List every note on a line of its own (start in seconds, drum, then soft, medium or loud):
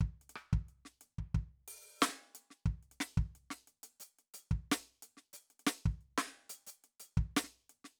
0.01 kick medium
0.22 closed hi-hat soft
0.30 closed hi-hat soft
0.36 cross-stick medium
0.53 kick medium
0.69 closed hi-hat soft
0.85 snare soft
1.01 closed hi-hat soft
1.19 kick soft
1.35 kick medium
1.68 open hi-hat medium
2.01 snare loud
2.01 hi-hat pedal soft
2.09 snare soft
2.35 closed hi-hat medium
2.51 snare soft
2.66 kick medium
2.83 closed hi-hat soft
2.92 closed hi-hat soft
3.01 snare medium
3.18 kick medium
3.35 closed hi-hat soft
3.51 snare medium
3.68 closed hi-hat soft
3.83 closed hi-hat medium
4.00 hi-hat pedal medium
4.19 closed hi-hat soft
4.34 closed hi-hat medium
4.51 kick medium
4.72 snare loud
4.87 snare soft
5.03 closed hi-hat medium
5.17 snare soft
5.33 hi-hat pedal medium
5.50 closed hi-hat soft
5.60 closed hi-hat soft
5.67 snare loud
5.86 kick medium
6.01 closed hi-hat soft
6.18 snare loud
6.27 snare soft
6.50 closed hi-hat medium
6.67 hi-hat pedal medium
6.84 closed hi-hat soft
7.00 closed hi-hat medium
7.17 kick medium
7.37 snare loud
7.44 snare soft
7.70 closed hi-hat soft
7.85 snare soft